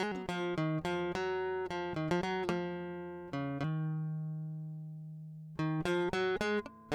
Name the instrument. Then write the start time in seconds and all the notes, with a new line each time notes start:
acoustic guitar
0.01 G#3
0.13 F#3
0.31 F3
0.59 D#3
0.86 F3
1.17 F#3
1.72 F3
1.99 D#3
2.13 F3
2.26 F#3
2.52 F3
3.35 C#3
3.63 D#3
5.61 D#3
5.87 F3
6.15 F#3
6.43 G#3